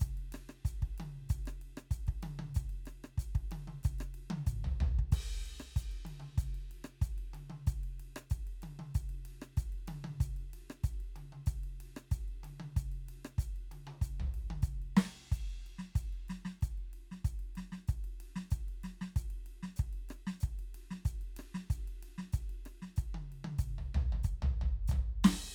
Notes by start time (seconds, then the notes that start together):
0.01 kick, hi-hat pedal, ride
0.18 ride
0.33 cross-stick, ride
0.50 cross-stick
0.66 kick, hi-hat pedal, ride
0.83 kick, ride
0.99 high tom, ride
1.30 kick, hi-hat pedal, ride
1.47 cross-stick, ride
1.63 ride
1.78 cross-stick
1.92 kick, hi-hat pedal, ride
2.08 kick, ride
2.24 high tom, ride
2.40 high tom
2.56 kick, hi-hat pedal, ride
2.71 ride
2.87 cross-stick, ride
3.05 cross-stick
3.19 kick, hi-hat pedal, ride
3.36 kick, ride
3.52 high tom, ride
3.69 high tom
3.84 kick, hi-hat pedal, ride
4.00 cross-stick, ride
4.15 ride
4.31 high tom
4.48 kick, hi-hat pedal, ride
4.65 floor tom
4.81 floor tom
5.00 kick
5.13 kick, hi-hat pedal, crash, ride
5.47 ride
5.61 cross-stick
5.77 kick, hi-hat pedal, ride
5.93 ride
6.06 high tom, ride
6.21 high tom
6.39 kick, hi-hat pedal, ride
6.56 ride
6.72 ride
6.85 cross-stick
7.03 kick, hi-hat pedal, ride
7.19 ride
7.35 high tom, ride
7.51 high tom
7.68 kick, hi-hat pedal, ride
7.85 ride
8.01 ride
8.17 cross-stick
8.31 kick, hi-hat pedal, ride
8.48 ride
8.63 high tom, ride
8.80 high tom
8.96 kick, hi-hat pedal, ride
9.10 ride
9.26 ride
9.43 cross-stick
9.58 kick, hi-hat pedal, ride
9.73 ride
9.89 high tom, ride
10.05 high tom
10.21 kick, hi-hat pedal, ride
10.38 ride
10.55 ride
10.71 cross-stick
10.85 kick, hi-hat pedal, ride
11.01 ride
11.17 high tom, ride
11.33 high tom
11.47 kick, hi-hat pedal, ride
11.65 ride
11.81 ride
11.97 cross-stick
12.12 kick, hi-hat pedal, ride
12.29 ride
12.45 high tom, ride
12.61 high tom
12.77 kick, hi-hat pedal, ride
12.93 ride
13.10 ride
13.26 cross-stick
13.39 kick, hi-hat pedal, ride
13.57 ride
13.72 high tom, ride
13.88 high tom
14.03 kick, hi-hat pedal, ride
14.21 floor tom
14.35 ride
14.51 high tom
14.63 kick, hi-hat pedal, ride
14.83 ride
14.98 snare, ride
15.33 kick, hi-hat pedal, ride
15.50 ride
15.68 ride
15.80 snare
15.96 kick, hi-hat pedal, ride
16.14 ride
16.30 snare, ride
16.46 snare
16.62 kick, hi-hat pedal, ride
16.79 ride
16.94 ride
17.12 snare
17.26 kick, hi-hat pedal, ride
17.40 ride
17.57 snare, ride
17.73 snare
17.89 kick, hi-hat pedal, ride
18.05 ride
18.21 ride
18.37 snare
18.52 kick, hi-hat pedal, ride
18.70 ride
18.85 snare, ride
19.02 snare
19.17 kick, hi-hat pedal, ride
19.31 ride
19.47 ride
19.64 snare
19.77 kick, hi-hat pedal, ride
19.94 ride
20.10 cross-stick, ride
20.28 snare
20.41 kick, hi-hat pedal, ride
20.60 ride
20.76 ride
20.92 snare
21.06 kick, hi-hat pedal, ride
21.22 ride
21.38 cross-stick, ride
21.55 snare
21.71 kick, hi-hat pedal, ride
21.89 ride
22.04 ride
22.19 snare
22.34 kick, hi-hat pedal, ride
22.51 ride
22.66 cross-stick, ride
22.83 snare
22.97 kick, hi-hat pedal, ride
23.16 high tom
23.33 ride
23.45 high tom
23.60 kick, hi-hat pedal, ride
23.79 floor tom
23.96 floor tom
24.13 floor tom
24.24 kick, hi-hat pedal
24.43 floor tom
24.62 floor tom
24.89 kick, floor tom, hi-hat pedal
25.25 snare, crash